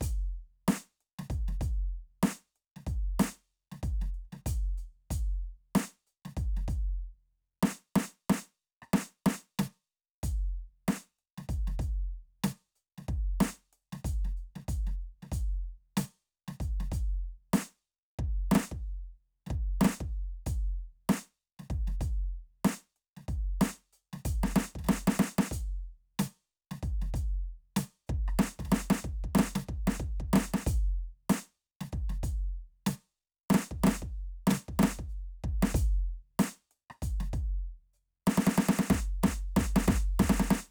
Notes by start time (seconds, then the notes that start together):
0.01 closed hi-hat, kick
0.68 closed hi-hat, snare
1.01 closed hi-hat
1.19 snare
1.30 closed hi-hat, kick
1.48 snare
1.61 closed hi-hat, kick
2.23 closed hi-hat, snare
2.56 closed hi-hat
2.76 snare
2.87 closed hi-hat, kick
3.20 closed hi-hat, snare
3.72 snare
3.83 closed hi-hat, kick
4.02 snare
4.14 closed hi-hat
4.25 kick
4.32 snare
4.46 closed hi-hat, kick
4.78 closed hi-hat
5.11 closed hi-hat, kick
5.75 closed hi-hat, snare
6.07 closed hi-hat
6.25 snare
6.37 closed hi-hat, kick
6.57 snare
6.68 closed hi-hat, kick
7.63 snare
7.96 snare
8.30 snare
8.82 cross-stick
8.93 snare
9.26 snare
9.59 snare
10.23 closed hi-hat, kick
10.88 closed hi-hat, snare
11.19 closed hi-hat
11.38 snare
11.49 closed hi-hat, kick
11.67 snare
11.79 closed hi-hat, kick
12.44 closed hi-hat, snare
12.76 closed hi-hat
12.98 snare
13.09 kick, closed hi-hat
13.41 closed hi-hat, snare
13.73 closed hi-hat
13.93 snare
14.05 closed hi-hat, kick
14.25 snare
14.37 closed hi-hat
14.56 snare
14.68 closed hi-hat, kick
14.87 snare
15.01 closed hi-hat
15.22 snare
15.32 closed hi-hat, kick
15.97 closed hi-hat, snare
16.48 snare
16.60 closed hi-hat, kick
16.80 snare
16.92 closed hi-hat, kick
17.53 closed hi-hat, snare
18.19 kick
18.51 snare
18.55 snare
18.72 kick
19.46 kick, snare
19.50 kick
19.81 snare
19.85 snare
20.01 kick
20.46 closed hi-hat, kick
21.09 closed hi-hat, snare
21.59 snare
21.70 kick, closed hi-hat
21.74 crash
21.88 snare
22.01 closed hi-hat, kick
22.65 closed hi-hat, snare
22.96 closed hi-hat
23.17 snare
23.28 closed hi-hat, kick
23.61 closed hi-hat, snare
23.93 closed hi-hat
24.13 snare
24.25 closed hi-hat, kick
24.43 snare
24.54 snare, hi-hat pedal
24.75 kick, snare
24.84 snare
24.86 snare
24.89 snare
25.07 snare
25.19 snare
25.38 snare
25.51 closed hi-hat, kick
26.19 closed hi-hat, snare
26.71 snare
26.83 closed hi-hat, kick
27.02 snare
27.14 closed hi-hat, kick
27.76 closed hi-hat, snare
28.07 kick, hi-hat pedal
28.28 cross-stick
28.39 snare
28.59 kick, snare
28.65 snare
28.71 snare, hi-hat pedal
28.90 snare
29.04 kick
29.24 kick
29.35 snare, hi-hat pedal
29.39 snare
29.55 snare
29.69 kick
29.87 snare
30.00 kick
30.20 kick
30.28 kick
30.33 snare
30.36 snare
30.54 snare
30.67 closed hi-hat, kick
31.30 closed hi-hat, snare
31.81 snare
31.93 kick, closed hi-hat
32.10 snare
32.23 closed hi-hat, kick
32.87 closed hi-hat, snare
33.50 snare, hi-hat pedal
33.54 snare
33.71 kick
33.84 snare
33.87 snare
34.02 kick
34.47 snare
34.51 snare
34.68 kick
34.79 snare
34.83 snare
34.99 kick
35.09 hi-hat pedal
35.44 kick, snare
35.48 crash, ride
35.63 snare
35.75 closed hi-hat, kick
36.39 closed hi-hat, snare
36.71 closed hi-hat
36.90 cross-stick
37.02 closed hi-hat, kick
37.20 snare
37.33 closed hi-hat, kick
37.94 hi-hat pedal
38.27 snare, hi-hat pedal
38.38 snare
38.47 snare
38.55 snare, hi-hat pedal
38.69 snare
38.79 snare
38.90 kick, snare
39.23 kick, snare, hi-hat pedal
39.57 kick, snare, hi-hat pedal
39.76 snare
39.88 kick, snare, hi-hat pedal
40.20 kick, snare, hi-hat pedal
40.51 snare